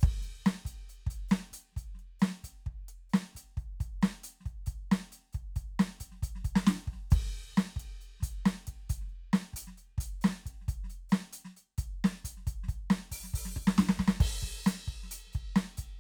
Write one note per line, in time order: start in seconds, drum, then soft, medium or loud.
0.01 kick loud
0.01 hi-hat pedal medium
0.01 crash medium
0.21 closed hi-hat soft
0.21 snare soft
0.47 snare loud
0.66 closed hi-hat medium
0.66 kick soft
0.90 closed hi-hat soft
1.07 closed hi-hat medium
1.07 kick medium
1.07 snare soft
1.29 snare loud
1.29 hi-hat pedal soft
1.52 closed hi-hat loud
1.52 kick soft
1.73 snare soft
1.77 closed hi-hat medium
1.77 kick soft
1.95 snare soft
2.00 closed hi-hat soft
2.20 snare loud
2.20 hi-hat pedal soft
2.28 snare medium
2.45 closed hi-hat medium
2.45 kick soft
2.67 kick soft
2.67 closed hi-hat soft
2.89 closed hi-hat medium
3.10 hi-hat pedal soft
3.15 snare loud
3.36 closed hi-hat medium
3.36 kick soft
3.58 closed hi-hat soft
3.58 kick medium
3.81 closed hi-hat medium
3.81 kick medium
4.02 snare loud
4.02 hi-hat pedal soft
4.09 snare medium
4.24 closed hi-hat loud
4.41 snare soft
4.46 closed hi-hat soft
4.46 kick soft
4.67 closed hi-hat medium
4.67 kick medium
4.92 snare loud
5.13 closed hi-hat medium
5.34 closed hi-hat soft
5.34 kick medium
5.57 closed hi-hat medium
5.57 kick medium
5.80 snare loud
6.01 closed hi-hat medium
6.01 kick soft
6.12 snare soft
6.23 closed hi-hat medium
6.23 kick medium
6.36 snare soft
6.45 closed hi-hat medium
6.45 kick medium
6.56 snare loud
6.67 snare loud
6.67 hi-hat pedal soft
6.88 kick medium
6.94 snare soft
7.11 kick loud
7.11 hi-hat pedal medium
7.11 crash medium
7.27 snare soft
7.32 closed hi-hat soft
7.58 snare loud
7.77 kick medium
7.77 closed hi-hat medium
8.02 closed hi-hat soft
8.21 closed hi-hat loud
8.21 kick medium
8.21 snare soft
8.46 snare loud
8.68 kick soft
8.68 closed hi-hat medium
8.90 closed hi-hat medium
8.90 kick medium
9.02 snare soft
9.07 snare soft
9.07 closed hi-hat soft
9.34 snare loud
9.54 closed hi-hat loud
9.54 kick soft
9.68 snare soft
9.78 closed hi-hat soft
9.99 closed hi-hat loud
9.99 kick medium
10.22 snare loud
10.22 hi-hat pedal medium
10.29 snare medium
10.46 kick soft
10.46 closed hi-hat medium
10.62 snare soft
10.69 closed hi-hat medium
10.69 kick medium
10.85 snare soft
10.91 closed hi-hat soft
11.10 snare loud
11.10 hi-hat pedal soft
11.34 closed hi-hat loud
11.46 snare medium
11.57 closed hi-hat soft
11.79 closed hi-hat medium
11.79 kick medium
12.05 snare loud
12.25 closed hi-hat loud
12.25 kick soft
12.38 snare soft
12.44 closed hi-hat medium
12.44 kick medium
12.44 snare soft
12.64 snare soft
12.69 open hi-hat soft
12.69 kick medium
12.91 snare loud
13.12 open hi-hat loud
13.12 kick soft
13.24 snare soft
13.35 open hi-hat loud
13.35 kick medium
13.46 snare medium
13.57 kick soft
13.57 cross-stick medium
13.68 snare loud
13.79 kick soft
13.79 snare loud
13.90 snare loud
14.00 kick medium
14.00 snare loud
14.09 snare loud
14.21 kick loud
14.21 crash loud
14.41 open hi-hat medium
14.41 kick soft
14.41 snare soft
14.64 closed hi-hat loud
14.64 snare loud
14.64 hi-hat pedal medium
14.88 kick medium
14.88 closed hi-hat soft
15.04 snare soft
15.12 closed hi-hat loud
15.28 snare soft
15.34 closed hi-hat soft
15.34 kick medium
15.57 snare loud
15.78 closed hi-hat medium
15.78 kick soft